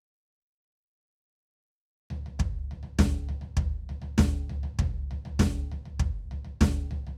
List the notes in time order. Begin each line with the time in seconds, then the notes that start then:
2.10 floor tom
2.26 floor tom
2.39 kick, floor tom
2.71 floor tom
2.83 floor tom
2.98 kick, snare, floor tom
3.29 floor tom
3.41 floor tom
3.57 kick, floor tom
3.89 floor tom
4.02 floor tom
4.18 kick, snare, floor tom
4.49 floor tom
4.63 floor tom
4.79 kick, floor tom
5.11 floor tom
5.25 floor tom
5.39 kick, snare, floor tom
5.71 floor tom
5.85 floor tom
5.99 kick, floor tom
6.31 floor tom
6.45 floor tom
6.61 kick, snare, floor tom
6.91 floor tom
7.07 floor tom